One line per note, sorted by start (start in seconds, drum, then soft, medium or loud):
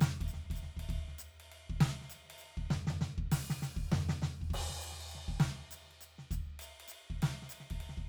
0.01 snare loud
0.01 percussion medium
0.21 kick medium
0.21 ride medium
0.28 percussion soft
0.34 snare soft
0.50 kick soft
0.50 ride medium
0.56 percussion soft
0.63 snare soft
0.77 kick soft
0.77 ride medium
0.89 kick medium
0.89 ride medium
1.08 snare soft
1.19 ride soft
1.19 percussion medium
1.40 ride soft
1.52 ride soft
1.70 kick soft
1.81 snare loud
1.81 ride medium
2.02 snare soft
2.10 ride soft
2.10 percussion medium
2.30 ride medium
2.38 ride soft
2.38 percussion soft
2.57 kick soft
2.71 snare medium
2.71 mid tom medium
2.87 snare medium
2.87 mid tom medium
3.01 snare medium
3.01 mid tom medium
3.18 kick medium
3.32 snare medium
3.32 percussion loud
3.50 snare medium
3.50 percussion soft
3.62 snare medium
3.62 percussion soft
3.77 kick medium
3.92 snare medium
3.92 mid tom loud
4.09 snare medium
4.09 mid tom medium
4.22 snare medium
4.22 mid tom medium
4.42 kick soft
4.50 kick medium
4.50 crash loud
4.70 snare soft
4.81 ride soft
4.81 percussion soft
4.92 snare soft
5.01 ride soft
5.08 ride soft
5.08 percussion soft
5.15 snare soft
5.28 kick medium
5.40 snare medium
5.40 ride medium
5.71 ride soft
5.71 percussion medium
5.91 ride soft
6.01 percussion medium
6.07 ride soft
6.19 snare soft
6.31 kick medium
6.31 percussion medium
6.59 ride medium
6.59 percussion medium
6.80 ride medium
6.88 ride medium
6.88 percussion medium
7.10 kick soft
7.22 snare medium
7.22 ride medium
7.43 snare soft
7.50 ride medium
7.50 percussion medium
7.60 snare soft
7.70 kick soft
7.70 ride soft
7.89 snare soft
7.98 kick soft